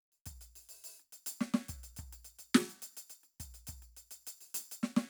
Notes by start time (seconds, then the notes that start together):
0.12 percussion
0.26 kick, percussion
0.41 percussion
0.56 percussion
0.69 percussion
0.84 percussion
1.00 percussion
1.13 percussion
1.27 percussion
1.41 snare
1.54 snare
1.64 percussion
1.69 kick, percussion
1.84 percussion
1.97 kick, percussion
2.13 percussion
2.25 percussion
2.39 percussion
2.55 snare
2.70 percussion
2.82 percussion
2.97 percussion
3.10 percussion
3.24 percussion
3.40 kick, percussion
3.54 percussion
3.67 kick, percussion
3.83 percussion
3.97 percussion
4.11 percussion
4.27 percussion
4.41 percussion
4.55 percussion
4.72 percussion
4.83 snare
4.97 snare